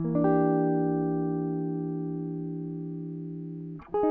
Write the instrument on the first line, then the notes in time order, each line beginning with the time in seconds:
electric guitar
0.00 E3
0.05 A#3
0.15 D4
0.25 G4
3.94 G#4
4.04 D#4